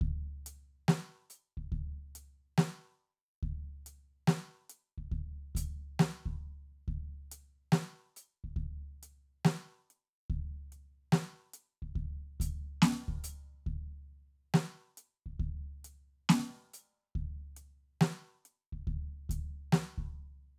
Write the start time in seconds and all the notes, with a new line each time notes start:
0.01 kick, ride
0.46 closed hi-hat
0.88 snare
1.30 closed hi-hat
1.57 kick
1.72 kick
2.15 closed hi-hat
2.58 snare
3.43 kick, crash, ride
3.86 closed hi-hat
4.28 snare
4.70 closed hi-hat
4.98 kick
5.12 kick
5.55 closed hi-hat, kick, snare
5.99 snare
6.26 kick
6.88 kick, ride
7.32 closed hi-hat
7.72 snare
8.16 closed hi-hat
8.44 kick
8.56 kick
9.03 closed hi-hat
9.45 snare
9.90 closed hi-hat
10.30 kick, crash, ride
10.72 closed hi-hat
11.12 snare
11.54 closed hi-hat
11.82 kick
11.96 kick, crash
12.40 closed hi-hat, kick
12.82 snare
13.08 kick
13.24 closed hi-hat
13.66 kick, crash
14.54 snare
14.97 closed hi-hat
15.26 kick
15.40 kick
15.84 closed hi-hat
16.29 snare
16.74 closed hi-hat
17.15 kick, crash
17.57 closed hi-hat
18.01 snare
18.45 closed hi-hat
18.73 kick
18.87 kick
19.29 kick, snare, closed hi-hat
19.73 snare
19.98 kick